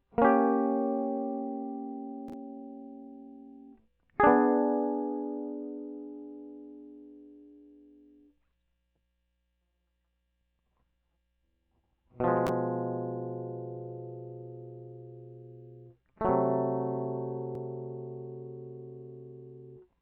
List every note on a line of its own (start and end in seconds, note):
0.18 3.79 A#3
0.18 3.76 C#4
0.24 3.80 G4
4.20 8.34 D4
4.20 8.30 G#4
4.27 8.21 B3
12.21 15.94 B2
12.21 15.95 F3
12.28 15.90 G#3
16.21 19.87 F#3
16.21 19.82 A3
16.30 19.79 C3